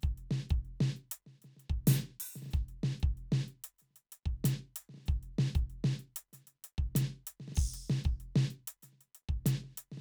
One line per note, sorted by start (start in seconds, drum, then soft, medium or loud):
0.01 kick medium
0.01 closed hi-hat soft
0.01 hi-hat pedal soft
0.18 closed hi-hat soft
0.31 snare medium
0.50 kick medium
0.50 closed hi-hat soft
0.65 closed hi-hat soft
0.81 snare loud
0.97 closed hi-hat soft
1.12 closed hi-hat loud
1.27 snare soft
1.42 snare soft
1.42 closed hi-hat soft
1.57 snare soft
1.57 closed hi-hat soft
1.70 kick soft
1.87 open hi-hat loud
1.87 snare loud
1.92 snare medium
1.96 snare soft
2.00 snare soft
2.03 snare soft
2.20 open hi-hat loud
2.36 snare soft
2.43 snare soft
2.46 snare soft
2.50 snare soft
2.50 closed hi-hat soft
2.50 hi-hat pedal medium
2.54 kick medium
2.69 closed hi-hat soft
2.84 snare medium
3.00 kick medium
3.00 closed hi-hat soft
3.18 closed hi-hat soft
3.32 snare medium
3.48 closed hi-hat soft
3.64 closed hi-hat medium
3.79 snare soft
3.79 hi-hat pedal soft
3.91 snare soft
3.96 closed hi-hat soft
4.12 closed hi-hat medium
4.26 kick soft
4.45 open hi-hat loud
4.45 snare medium
4.76 open hi-hat loud
4.90 snare soft
4.95 snare soft
4.98 snare soft
5.06 kick medium
5.06 snare soft
5.06 hi-hat pedal medium
5.23 closed hi-hat soft
5.39 snare loud
5.55 kick medium
5.55 closed hi-hat soft
5.70 closed hi-hat soft
5.85 snare medium
6.00 closed hi-hat soft
6.17 closed hi-hat loud
6.33 snare soft
6.33 hi-hat pedal medium
6.47 snare soft
6.47 closed hi-hat soft
6.64 closed hi-hat medium
6.79 kick medium
6.96 open hi-hat loud
6.96 snare medium
7.02 snare soft
7.27 open hi-hat loud
7.40 snare soft
7.48 snare soft
7.52 snare soft
7.52 hi-hat pedal medium
7.52 crash medium
7.58 kick medium
7.74 closed hi-hat medium
7.90 snare medium
8.04 kick medium
8.04 closed hi-hat soft
8.21 closed hi-hat soft
8.36 snare loud
8.51 closed hi-hat soft
8.68 closed hi-hat loud
8.83 snare soft
8.83 hi-hat pedal medium
8.93 snare soft
9.01 closed hi-hat soft
9.15 closed hi-hat soft
9.29 kick soft
9.46 open hi-hat loud
9.46 snare loud
9.64 snare soft
9.78 open hi-hat medium
9.92 snare soft
9.98 snare soft